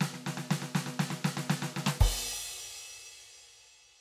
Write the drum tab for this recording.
CC |----------------|x---------------|
SD |oooooooooooooooo|----------------|
BD |----------------|o---------------|